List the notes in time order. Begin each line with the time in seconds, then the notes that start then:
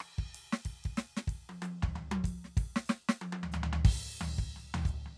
0.01 cross-stick, ride
0.19 kick
0.35 hi-hat pedal, ride
0.53 snare
0.66 kick, ride
0.85 kick, ride
0.98 snare, hi-hat pedal, ride
1.17 snare
1.28 kick, ride
1.50 high tom
1.63 hi-hat pedal, high tom
1.83 kick, floor tom
1.96 floor tom
2.12 high tom
2.25 kick, hi-hat pedal, ride
2.45 snare
2.58 kick, ride
2.77 snare
2.86 snare, hi-hat pedal
3.10 snare
3.22 high tom
3.33 high tom
3.44 floor tom
3.52 floor tom, hi-hat pedal
3.64 floor tom
3.74 floor tom
3.85 kick, crash
4.20 floor tom, hi-hat pedal
4.39 kick
4.57 floor tom
4.75 floor tom
4.86 kick, hi-hat pedal
5.07 floor tom